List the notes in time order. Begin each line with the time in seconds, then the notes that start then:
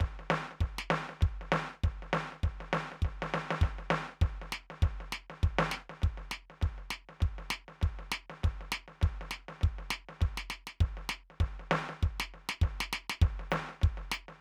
0.01 kick, snare
0.20 snare
0.31 snare
0.52 snare
0.61 kick, snare
0.79 snare
0.91 snare
1.10 snare
1.22 kick, snare
1.42 snare
1.53 snare
1.74 snare
1.84 kick, snare
2.03 snare
2.14 snare
2.33 snare
2.44 kick, snare
2.61 snare
2.74 snare
2.93 snare
3.03 kick, snare
3.23 snare
3.35 kick, snare
3.51 snare
3.62 kick, snare
3.79 snare
3.91 snare
4.10 snare
4.22 kick, snare
4.42 snare
4.53 snare
4.71 snare
4.83 kick, snare
5.01 snare
5.13 snare
5.31 snare
5.44 kick, snare
5.59 snare
5.72 snare
5.90 snare
6.03 kick, snare
6.18 snare
6.32 snare
6.51 snare
6.62 kick, snare
6.79 snare
6.91 snare
7.10 snare
7.21 kick, snare
7.39 snare
7.51 snare
7.69 snare
7.82 kick, snare
8.00 snare
8.12 snare
8.30 snare
8.44 kick, snare
8.62 snare
8.73 snare
8.89 snare
9.02 kick, snare
9.22 snare
9.32 snare
9.49 snare
9.62 kick, snare
9.79 snare
9.91 snare
10.10 snare
10.22 kick, snare
10.38 snare
10.51 snare
10.68 snare
10.81 kick, snare
10.98 snare
11.10 snare
11.31 snare
11.41 kick, snare
11.60 snare
11.72 snare
11.90 snare
12.04 kick, snare
12.21 snare
12.35 snare
12.50 snare
12.62 kick, snare
12.81 snare
12.94 snare
13.10 snare
13.22 kick, snare
13.40 snare
13.45 kick
13.52 snare, hi-hat pedal
13.59 kick
13.70 snare
13.82 kick, snare
13.98 snare
14.12 snare, hi-hat pedal
14.29 snare